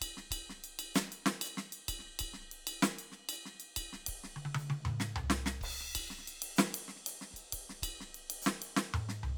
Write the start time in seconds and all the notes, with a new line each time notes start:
0.01 kick, ride bell
0.17 snare
0.31 kick, ride bell
0.49 snare
0.56 snare
0.62 snare, ride bell
0.79 ride bell
0.94 snare, hi-hat pedal
1.12 ride bell
1.26 snare
1.41 hi-hat pedal, ride bell
1.57 snare
1.72 ride bell
1.88 kick, ride bell
1.99 snare
2.05 snare
2.19 kick, ride bell
2.33 snare
2.40 snare
2.51 ride
2.67 ride bell
2.82 snare, hi-hat pedal
2.98 ride bell
3.12 snare
3.29 hi-hat pedal, ride bell
3.45 snare
3.54 snare
3.60 snare, ride bell
3.76 kick, ride bell
3.92 snare
4.06 kick, ride
4.23 snare
4.36 high tom
4.45 high tom
4.54 hi-hat pedal, high tom
4.70 high tom
4.85 mid tom
5.00 snare
5.16 floor tom
5.30 snare
5.46 snare
5.59 kick, hi-hat pedal, crash
5.67 kick
5.73 kick
5.81 cross-stick
5.95 kick, ride bell
6.10 snare
6.18 snare
6.27 ride bell
6.42 ride
6.56 snare, hi-hat pedal
6.66 snare
6.74 ride
6.88 snare
6.96 snare
7.06 hi-hat pedal, ride
7.21 snare
7.31 kick, snare
7.36 ride bell
7.52 kick, hi-hat pedal, ride
7.69 snare
7.82 kick, ride bell
8.00 snare
8.14 ride
8.30 ride
8.42 hi-hat pedal
8.46 snare
8.62 ride
8.76 snare
8.94 mid tom
9.08 snare
9.23 floor tom